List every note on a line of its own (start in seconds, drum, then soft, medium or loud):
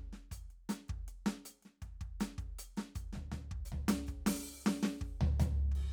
0.13 snare soft
0.31 closed hi-hat medium
0.31 kick soft
0.50 closed hi-hat soft
0.69 closed hi-hat medium
0.69 snare medium
0.88 kick medium
0.88 closed hi-hat soft
1.08 closed hi-hat soft
1.26 snare medium
1.26 closed hi-hat soft
1.45 closed hi-hat medium
1.62 snare soft
1.62 closed hi-hat soft
1.82 kick soft
1.82 snare soft
1.82 closed hi-hat soft
2.01 kick soft
2.01 closed hi-hat soft
2.20 closed hi-hat medium
2.20 snare medium
2.38 kick soft
2.38 closed hi-hat soft
2.59 closed hi-hat medium
2.77 snare medium
2.77 closed hi-hat soft
2.95 closed hi-hat soft
2.95 kick soft
3.13 snare soft
3.13 floor tom soft
3.32 snare soft
3.32 floor tom medium
3.51 kick soft
3.65 hi-hat pedal medium
3.72 floor tom medium
3.88 snare medium
3.88 closed hi-hat loud
4.07 kick soft
4.07 hi-hat pedal soft
4.26 open hi-hat loud
4.26 snare medium
4.66 snare medium
4.83 snare medium
5.01 kick medium
5.21 floor tom loud
5.40 floor tom loud
5.40 hi-hat pedal medium
5.71 kick soft
5.71 ride medium